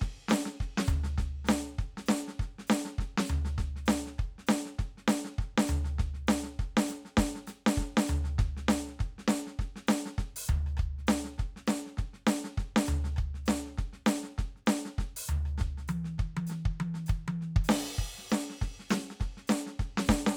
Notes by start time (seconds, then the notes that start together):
0.01 kick, snare
0.28 snare, hi-hat pedal
0.31 snare
0.45 snare
0.60 kick, snare
0.77 snare
0.86 kick, floor tom, hi-hat pedal
1.03 snare
1.18 kick, snare
1.44 snare, hi-hat pedal
1.49 snare
1.60 snare
1.64 snare
1.78 kick, snare
1.97 snare
2.06 snare, hi-hat pedal
2.28 snare
2.39 kick, snare
2.58 snare
2.67 snare, hi-hat pedal
2.85 snare
2.98 kick, snare
3.18 snare
3.26 floor tom, hi-hat pedal
3.45 snare
3.58 kick, snare
3.76 snare
3.86 snare, hi-hat pedal
4.06 snare
4.18 kick, cross-stick
4.38 snare
4.47 snare, hi-hat pedal
4.65 snare
4.79 kick, snare
4.97 snare
5.08 snare, hi-hat pedal
5.24 snare
5.38 kick, snare
5.58 snare
5.67 floor tom, hi-hat pedal
5.84 snare
5.98 kick, snare
6.14 snare
6.27 snare, hi-hat pedal
6.43 snare
6.59 kick, snare
6.77 snare
6.88 snare, hi-hat pedal
7.05 snare
7.17 kick, snare
7.35 snare
7.47 snare, hi-hat pedal
7.66 snare
7.77 kick, snare
7.97 snare
8.07 floor tom, hi-hat pedal
8.24 snare
8.38 kick, snare
8.57 snare
8.62 kick
8.68 snare, hi-hat pedal
8.73 kick
8.88 snare
8.99 kick, snare
9.18 snare
9.28 snare, hi-hat pedal
9.47 snare
9.59 kick, snare
9.76 snare
9.87 snare, hi-hat pedal
10.05 snare
10.18 kick, snare
10.36 open hi-hat
10.47 kick, floor tom, hi-hat pedal
10.66 cross-stick
10.77 kick, cross-stick
10.98 snare
11.07 snare, hi-hat pedal
11.24 snare
11.38 kick, snare
11.56 snare
11.67 snare, hi-hat pedal
11.86 snare
11.97 kick, snare
12.13 snare
12.27 snare, hi-hat pedal
12.44 snare
12.57 kick, snare
12.76 snare
12.86 floor tom, hi-hat pedal
13.04 snare
13.16 kick, cross-stick
13.34 snare
13.46 snare, hi-hat pedal
13.66 snare
13.78 kick, snare
13.93 snare
14.06 snare, hi-hat pedal
14.23 snare
14.38 kick, snare
14.56 snare
14.66 snare, hi-hat pedal
14.85 snare
14.98 kick, snare
15.16 open hi-hat
15.28 floor tom, hi-hat pedal
15.45 cross-stick
15.58 kick, snare
15.77 snare
15.88 hi-hat pedal, high tom
16.04 snare
16.18 kick, snare
16.37 high tom
16.47 snare, hi-hat pedal
16.65 kick
16.80 high tom
16.94 snare
17.06 kick, cross-stick, hi-hat pedal
17.28 high tom
17.41 snare
17.56 kick
17.64 hi-hat pedal
17.68 snare, crash
17.98 kick
18.18 snare
18.29 snare, hi-hat pedal
18.50 snare
18.61 kick, snare
18.79 snare
18.89 snare, hi-hat pedal
19.10 snare
19.20 kick, snare
19.37 snare
19.47 snare, hi-hat pedal
19.66 snare
19.79 kick, snare
19.97 snare
20.06 kick, snare, hi-hat pedal
20.26 snare